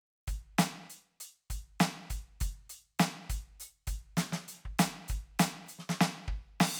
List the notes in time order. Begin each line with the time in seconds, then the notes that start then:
0.28 closed hi-hat, kick
0.58 closed hi-hat, snare
0.90 closed hi-hat
1.21 closed hi-hat
1.50 closed hi-hat, kick
1.80 closed hi-hat, snare
2.10 closed hi-hat, kick
2.41 closed hi-hat, kick
2.70 closed hi-hat
2.99 closed hi-hat, snare
3.30 open hi-hat, kick
3.60 open hi-hat, hi-hat pedal
3.87 closed hi-hat, kick
4.17 closed hi-hat, snare, hi-hat pedal
4.33 snare
4.48 closed hi-hat
4.65 kick
4.79 closed hi-hat, snare
5.08 closed hi-hat, kick
5.39 closed hi-hat, snare
5.66 closed hi-hat, hi-hat pedal
5.79 snare
5.90 snare
6.01 snare
6.28 kick
6.60 snare, crash